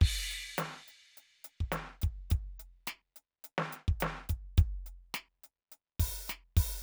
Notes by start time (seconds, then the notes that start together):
0.01 kick, crash
0.31 closed hi-hat
0.58 snare, closed hi-hat
0.88 closed hi-hat
1.17 closed hi-hat
1.44 closed hi-hat
1.60 kick
1.72 snare, closed hi-hat
2.02 kick, closed hi-hat
2.30 kick, closed hi-hat
2.60 closed hi-hat
2.87 snare, closed hi-hat
3.16 closed hi-hat
3.44 closed hi-hat
3.58 snare
3.73 closed hi-hat
3.88 kick
4.00 snare, closed hi-hat
4.29 kick, closed hi-hat
4.58 kick, closed hi-hat
4.86 closed hi-hat
5.14 closed hi-hat, snare
5.44 closed hi-hat
5.72 closed hi-hat
6.00 kick, open hi-hat
6.08 kick
6.28 snare, closed hi-hat, hi-hat pedal
6.57 kick, open hi-hat